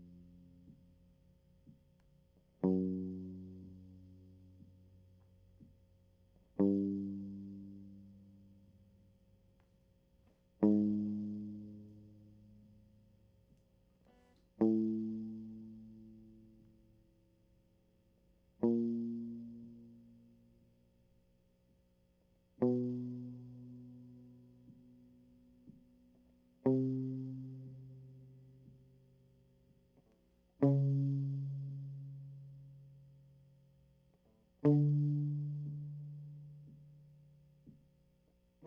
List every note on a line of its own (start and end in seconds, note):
2.65 6.42 F#2
6.61 10.37 G2
10.64 13.98 G#2
14.62 18.22 A2
18.64 21.95 A#2
22.63 26.19 B2
26.67 29.96 C3
30.64 34.12 C#3
34.66 38.16 D3